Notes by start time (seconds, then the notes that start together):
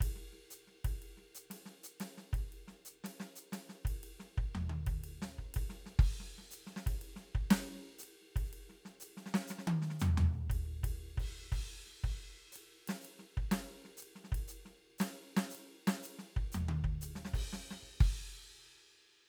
0.01 kick, ride
0.16 kick, snare
0.33 snare
0.51 hi-hat pedal, ride
0.68 snare
0.85 kick, ride
1.03 ride
1.18 snare
1.35 hi-hat pedal
1.51 snare, ride
1.56 hi-hat pedal
1.66 snare
1.84 hi-hat pedal
2.01 snare, ride
2.18 snare
2.33 kick, ride
2.53 ride
2.68 snare
2.86 hi-hat pedal
3.04 snare, ride
3.20 snare
3.36 hi-hat pedal
3.53 snare, ride
3.70 snare
3.85 kick, ride
4.04 ride
4.20 snare
4.38 kick
4.55 floor tom
4.70 high tom
4.87 kick, ride
5.04 ride
5.22 snare
5.39 kick
5.55 kick, ride
5.70 snare
5.87 snare
6.00 kick, crash
6.20 snare
6.39 snare
6.51 hi-hat pedal, ride
6.67 snare
6.77 snare
6.87 kick, ride
7.02 ride
7.17 snare
7.35 kick
7.51 snare, ride
7.87 snare
7.99 hi-hat pedal
8.04 ride
8.22 snare
8.36 kick, ride
8.46 hi-hat pedal
8.54 ride
8.70 snare
8.86 snare
9.01 hi-hat pedal, ride
9.18 snare
9.26 snare
9.35 snare
9.48 snare, hi-hat pedal
9.59 snare
9.68 high tom
9.82 snare
9.91 snare
9.96 snare
10.00 floor tom, hi-hat pedal
10.18 floor tom
10.33 snare
10.50 kick, ride
10.66 snare
10.84 kick, ride
11.18 kick, crash
11.52 kick, crash
11.87 snare
12.04 kick, crash
12.53 hi-hat pedal, ride
12.88 snare, ride
13.02 hi-hat pedal, ride
13.19 snare
13.38 kick
13.52 snare, ride
13.71 snare
13.85 snare
13.98 hi-hat pedal
14.03 ride
14.16 snare
14.25 snare
14.32 kick, ride
14.48 hi-hat pedal
14.53 ride
14.66 snare
14.99 snare, hi-hat pedal, ride
15.37 snare, ride
15.51 hi-hat pedal
15.55 ride
15.88 snare, ride
16.03 hi-hat pedal, ride
16.19 snare
16.37 kick
16.52 floor tom, hi-hat pedal
16.69 high tom
16.84 kick
17.02 hi-hat pedal, ride
17.16 snare
17.25 snare
17.34 kick, crash
17.53 snare
17.71 snare
17.83 kick
18.01 kick, crash